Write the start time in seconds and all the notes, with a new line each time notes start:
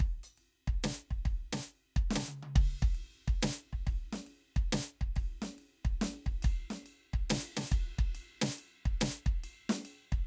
0.00 kick, ride
0.23 closed hi-hat
0.38 ride
0.67 kick
0.83 snare, ride
1.11 kick
1.25 kick, ride
1.53 snare
1.68 ride
1.96 kick
2.11 snare
2.16 snare
2.28 high tom
2.43 high tom
2.56 kick, crash
2.82 kick
2.95 ride
3.28 kick
3.42 snare, ride
3.73 kick
3.87 kick, ride
4.13 snare
4.26 ride
4.56 kick
4.72 snare
5.01 kick
5.16 kick, ride
5.42 snare
5.58 ride
5.85 kick
6.01 snare, ride
6.26 kick
6.42 kick, ride bell
6.70 snare
6.86 ride bell
7.13 kick
7.30 snare, ride
7.57 snare
7.71 kick, ride bell
7.98 kick
8.15 ride bell
8.41 snare
8.58 ride bell
8.85 kick
9.01 snare, ride bell
9.26 kick
9.44 ride bell
9.69 snare
9.85 ride bell
10.12 kick